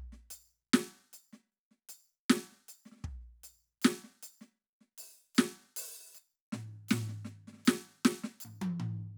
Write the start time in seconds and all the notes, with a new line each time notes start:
0.13 snare
0.31 percussion
0.74 snare
1.14 percussion
1.33 snare
1.53 percussion
1.71 snare
1.89 percussion
2.30 snare
2.37 snare
2.52 snare
2.69 percussion
2.86 snare
2.92 snare
2.97 snare
3.01 kick, snare
3.05 snare
3.09 snare
3.13 snare
3.21 snare
3.44 percussion
3.82 snare, percussion
4.04 snare
4.09 snare
4.23 percussion
4.42 snare
4.81 snare
4.98 percussion
5.35 snare, percussion
5.63 snare
5.77 percussion
6.15 percussion
6.53 snare, floor tom
6.89 snare, floor tom, percussion
7.09 snare
7.25 snare
7.48 snare
7.54 snare
7.58 snare
7.62 snare, percussion
7.67 snare
8.05 snare
8.24 snare
8.41 percussion
8.45 floor tom
8.62 high tom
8.80 floor tom